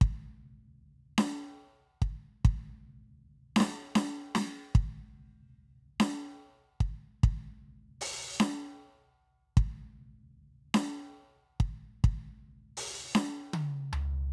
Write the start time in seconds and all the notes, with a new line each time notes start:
0.02 kick
1.19 snare
2.02 kick
2.46 kick
3.57 snare
3.61 snare
3.96 snare
4.36 snare
4.76 kick
6.01 snare
6.17 snare
6.81 kick
7.24 kick
8.02 open hi-hat
8.39 snare, hi-hat pedal
8.55 snare
9.58 kick
10.75 snare
11.61 kick
12.05 kick
12.78 open hi-hat
13.13 snare, hi-hat pedal
13.54 high tom
13.94 floor tom